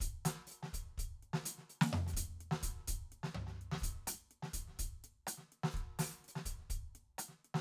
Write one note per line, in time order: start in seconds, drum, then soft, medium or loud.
0.01 closed hi-hat medium
0.01 kick soft
0.08 kick soft
0.26 closed hi-hat loud
0.26 snare medium
0.48 hi-hat pedal medium
0.52 closed hi-hat soft
0.63 snare medium
0.74 closed hi-hat medium
0.74 kick soft
0.84 snare soft
0.88 snare soft
0.98 closed hi-hat medium
0.98 kick soft
1.04 kick soft
1.23 closed hi-hat soft
1.34 snare medium
1.45 closed hi-hat loud
1.45 snare soft
1.59 snare soft
1.70 closed hi-hat soft
1.82 snare loud
1.94 floor tom loud
2.07 snare soft
2.07 hi-hat pedal medium
2.14 closed hi-hat loud
2.14 kick soft
2.41 closed hi-hat soft
2.52 snare medium
2.63 closed hi-hat loud
2.63 kick soft
2.70 kick soft
2.79 snare soft
2.88 closed hi-hat loud
2.88 kick soft
2.95 kick soft
3.12 closed hi-hat soft
3.24 snare medium
3.35 floor tom medium
3.48 snare soft
3.54 snare soft
3.62 open hi-hat soft
3.72 snare medium
3.79 kick soft
3.79 hi-hat pedal soft
3.84 closed hi-hat medium
3.89 kick soft
4.08 closed hi-hat loud
4.08 cross-stick medium
4.32 closed hi-hat soft
4.43 snare medium
4.54 closed hi-hat loud
4.54 kick soft
4.68 snare soft
4.75 snare soft
4.78 closed hi-hat loud
4.78 kick soft
4.78 snare soft
4.86 kick soft
5.04 closed hi-hat medium
5.27 closed hi-hat loud
5.27 cross-stick medium
5.38 snare soft
5.53 closed hi-hat soft
5.64 snare medium
5.71 kick soft
5.71 hi-hat pedal soft
5.77 kick soft
5.77 closed hi-hat soft
6.00 open hi-hat loud
6.00 snare medium
6.25 hi-hat pedal medium
6.25 open hi-hat soft
6.36 snare medium
6.46 closed hi-hat medium
6.46 kick soft
6.60 snare soft
6.65 snare soft
6.69 closed hi-hat medium
6.69 kick soft
6.69 snare soft
6.77 kick soft
6.96 closed hi-hat soft
7.19 closed hi-hat loud
7.19 cross-stick medium
7.29 snare soft
7.45 closed hi-hat soft
7.55 snare medium